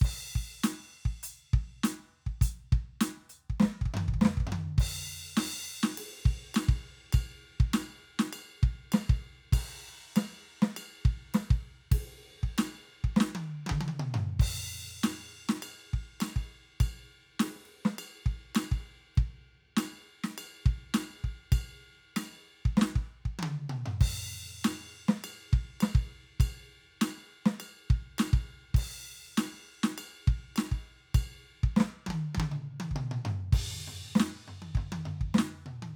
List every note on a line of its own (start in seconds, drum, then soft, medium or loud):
0.02 kick loud
0.02 hi-hat pedal soft
0.02 crash loud
0.36 kick medium
0.64 closed hi-hat loud
0.64 snare loud
1.06 kick medium
1.24 open hi-hat loud
1.54 kick loud
1.84 closed hi-hat loud
1.84 snare loud
2.27 kick medium
2.42 closed hi-hat loud
2.42 kick loud
2.73 kick loud
3.02 closed hi-hat loud
3.02 snare loud
3.30 closed hi-hat medium
3.50 kick medium
3.61 snare loud
3.64 kick soft
3.64 snare loud
3.82 kick medium
3.82 snare soft
3.86 kick medium
3.86 snare soft
3.95 floor tom loud
3.95 high tom loud
4.09 kick medium
4.15 kick medium
4.22 snare loud
4.26 snare loud
4.38 kick medium
4.41 kick medium
4.41 snare soft
4.48 kick soft
4.48 floor tom loud
4.53 high tom loud
4.79 kick loud
4.79 crash loud
5.38 snare loud
5.38 crash loud
5.84 snare loud
5.98 ride loud
6.26 kick loud
6.55 snare loud
6.55 ride bell loud
6.69 kick loud
7.13 kick loud
7.13 ride bell loud
7.61 kick loud
7.74 snare loud
7.74 ride bell loud
8.20 snare loud
8.34 ride bell loud
8.64 kick loud
8.93 snare loud
8.93 ride bell loud
9.10 kick loud
9.53 kick loud
9.53 ride bell loud
9.53 crash medium
10.17 snare loud
10.17 ride bell loud
10.63 snare loud
10.77 ride bell loud
11.06 kick loud
11.06 snare soft
11.35 snare loud
11.35 ride bell medium
11.51 kick loud
11.92 kick loud
11.92 ride loud
12.44 kick medium
12.59 snare loud
12.59 ride bell loud
13.05 kick loud
13.17 snare loud
13.21 snare loud
13.36 high tom loud
13.67 high tom loud
13.70 kick medium
13.70 high tom loud
13.81 high tom loud
13.89 high tom medium
14.00 mid tom loud
14.15 floor tom loud
14.40 kick loud
14.40 crash loud
15.04 snare loud
15.04 ride bell loud
15.50 snare loud
15.63 ride bell loud
15.94 kick medium
16.21 snare loud
16.21 ride bell loud
16.37 kick medium
16.81 kick loud
16.81 ride bell loud
17.40 snare loud
17.40 ride loud
17.66 ride soft
17.86 snare loud
17.99 ride bell loud
18.27 kick loud
18.56 snare loud
18.56 ride bell loud
18.72 kick loud
19.16 kick loud
19.16 ride soft
19.21 snare soft
19.78 snare loud
19.78 ride bell loud
20.25 snare loud
20.39 ride bell loud
20.66 kick loud
20.95 snare loud
20.95 ride bell loud
21.25 kick medium
21.53 kick loud
21.53 ride bell loud
22.17 snare loud
22.17 ride bell loud
22.66 kick loud
22.78 snare loud
22.82 snare loud
22.96 kick loud
23.26 kick medium
23.40 high tom loud
23.44 high tom loud
23.70 mid tom loud
23.87 floor tom loud
23.94 floor tom soft
24.02 kick loud
24.02 crash loud
24.65 snare loud
24.65 ride bell loud
25.09 snare loud
25.25 ride bell loud
25.54 kick loud
25.81 snare loud
25.81 ride bell loud
25.96 kick loud
26.41 kick loud
26.41 ride bell loud
27.02 snare loud
27.02 ride bell loud
27.46 snare loud
27.61 ride bell loud
27.91 kick loud
28.19 snare loud
28.19 ride bell loud
28.34 kick loud
28.75 kick loud
28.75 ride bell medium
28.75 crash medium
29.38 snare loud
29.38 ride bell loud
29.84 snare loud
29.99 ride bell loud
30.28 kick loud
30.57 snare loud
30.57 ride bell loud
30.72 kick medium
31.15 kick loud
31.15 ride bell loud
31.64 kick loud
31.76 kick soft
31.76 snare loud
31.81 snare loud
32.07 kick soft
32.07 high tom loud
32.11 high tom loud
32.36 kick medium
32.36 high tom loud
32.41 high tom loud
32.52 mid tom medium
32.81 high tom loud
32.92 kick medium
32.97 mid tom loud
33.12 mid tom loud
33.26 floor tom loud
33.53 kick loud
33.53 ride loud
33.72 high tom medium
33.88 floor tom medium
34.16 snare loud
34.16 hi-hat pedal medium
34.20 snare loud
34.48 floor tom medium
34.63 high tom medium
34.76 kick loud
34.76 floor tom medium
34.93 high tom loud
35.06 floor tom medium
35.22 kick medium
35.35 snare loud
35.39 snare loud
35.67 mid tom medium
35.83 high tom medium